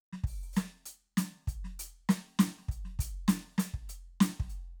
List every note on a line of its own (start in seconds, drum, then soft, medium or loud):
0.13 snare soft
0.24 open hi-hat medium
0.24 kick medium
0.43 open hi-hat soft
0.53 closed hi-hat medium
0.53 snare loud
0.53 hi-hat pedal medium
0.86 closed hi-hat loud
1.17 closed hi-hat loud
1.17 snare loud
1.47 closed hi-hat medium
1.47 kick medium
1.64 snare soft
1.79 closed hi-hat loud
2.09 closed hi-hat loud
2.09 snare loud
2.39 closed hi-hat loud
2.39 snare loud
2.58 snare soft
2.69 closed hi-hat medium
2.69 kick medium
2.85 snare soft
2.90 snare soft
2.99 closed hi-hat loud
2.99 kick medium
3.28 closed hi-hat loud
3.28 snare loud
3.58 closed hi-hat loud
3.58 snare loud
3.74 kick medium
3.87 closed hi-hat medium
3.87 snare soft
4.21 closed hi-hat loud
4.21 snare loud
4.40 kick medium
4.40 snare soft
4.50 closed hi-hat soft